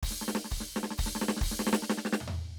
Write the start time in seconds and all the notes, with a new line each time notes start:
0.03 kick, crash
0.11 snare
0.21 snare
0.28 snare
0.35 snare
0.44 snare
0.50 kick, crash
0.60 snare
0.76 snare
0.83 snare
0.91 snare
0.98 kick, hi-hat pedal, crash
1.06 snare
1.15 snare
1.21 snare
1.28 snare
1.36 snare
1.41 kick, crash
1.51 snare
1.59 snare
1.67 snare
1.73 snare
1.80 snare, hi-hat pedal
1.90 snare
1.97 snare
2.05 snare
2.12 snare
2.20 floor tom
2.28 floor tom